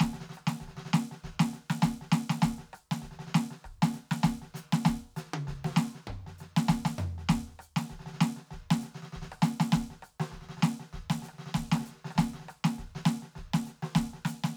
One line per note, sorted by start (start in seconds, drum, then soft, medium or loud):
0.01 kick soft
0.01 snare loud
0.14 snare medium
0.21 snare medium
0.30 snare medium
0.30 hi-hat pedal soft
0.38 cross-stick medium
0.48 snare loud
0.61 kick soft
0.61 snare soft
0.69 snare soft
0.76 snare soft
0.78 snare medium
0.86 snare medium
0.94 snare loud
0.94 hi-hat pedal soft
1.12 snare medium
1.24 kick soft
1.24 snare medium
1.40 snare loud
1.54 snare soft
1.54 hi-hat pedal soft
1.71 snare loud
1.83 kick soft
1.83 snare loud
2.02 snare soft
2.13 snare loud
2.13 hi-hat pedal soft
2.30 snare loud
2.43 kick soft
2.43 snare loud
2.59 snare soft
2.74 cross-stick medium
2.74 hi-hat pedal soft
2.92 snare loud
3.03 kick soft
3.03 snare soft
3.12 snare soft
3.20 snare medium
3.28 snare medium
3.35 snare loud
3.35 hi-hat pedal soft
3.52 snare medium
3.65 kick soft
3.65 cross-stick medium
3.83 snare loud
3.94 snare soft
3.94 hi-hat pedal soft
4.12 snare loud
4.24 kick soft
4.24 snare loud
4.43 snare soft
4.55 snare medium
4.55 hi-hat pedal medium
4.73 snare loud
4.86 kick soft
4.86 snare loud
5.17 snare medium
5.17 hi-hat pedal medium
5.34 high tom loud
5.48 kick soft
5.48 snare medium
5.54 kick soft
5.65 snare loud
5.71 snare medium
5.77 snare loud
5.77 hi-hat pedal medium
5.95 snare soft
6.08 kick soft
6.08 mid tom loud
6.27 snare soft
6.39 snare soft
6.39 hi-hat pedal soft
6.57 snare loud
6.69 kick soft
6.69 snare loud
6.86 snare loud
6.98 floor tom loud
6.98 hi-hat pedal soft
7.19 snare soft
7.30 kick soft
7.30 snare loud
7.48 snare soft
7.60 cross-stick medium
7.60 hi-hat pedal medium
7.77 snare loud
7.91 kick soft
7.91 snare soft
8.00 snare soft
8.07 snare medium
8.14 snare medium
8.22 snare loud
8.22 hi-hat pedal soft
8.37 snare soft
8.52 kick soft
8.52 snare medium
8.71 snare loud
8.82 snare soft
8.82 hi-hat pedal soft
8.95 snare medium
9.03 snare medium
9.14 kick soft
9.14 snare medium
9.23 snare medium
9.33 cross-stick medium
9.43 snare loud
9.43 hi-hat pedal soft
9.61 snare loud
9.73 kick soft
9.73 snare loud
9.91 snare soft
10.03 cross-stick medium
10.03 hi-hat pedal soft
10.21 snare loud
10.32 kick soft
10.32 snare soft
10.42 snare soft
10.50 snare medium
10.58 snare medium
10.63 snare loud
10.63 hi-hat pedal soft
10.80 snare medium
10.94 kick soft
10.94 snare medium
10.99 kick soft
11.11 snare loud
11.23 snare medium
11.23 hi-hat pedal medium
11.29 cross-stick medium
11.34 snare soft
11.39 snare medium
11.47 snare medium
11.55 kick soft
11.55 snare loud
11.73 snare loud
11.77 cross-stick medium
11.77 snare medium
11.84 snare soft
11.84 hi-hat pedal medium
11.88 snare soft
11.91 snare soft
11.93 snare soft
11.96 snare soft
11.99 snare soft
12.05 snare medium
12.11 cross-stick medium
12.16 kick soft
12.16 snare soft
12.18 snare loud
12.34 snare medium
12.41 snare soft
12.46 cross-stick medium
12.46 snare soft
12.50 hi-hat pedal soft
12.65 snare loud
12.79 kick soft
12.79 snare soft
12.96 snare medium
13.06 snare loud
13.06 hi-hat pedal soft
13.23 snare soft
13.36 kick soft
13.36 snare medium
13.54 snare loud
13.66 snare soft
13.66 hi-hat pedal soft
13.83 snare medium
13.96 kick soft
13.96 snare loud
14.14 snare soft
14.26 snare loud
14.26 hi-hat pedal medium
14.45 snare loud